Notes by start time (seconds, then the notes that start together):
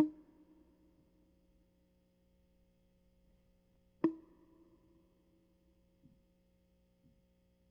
0.00 D#4
4.05 E4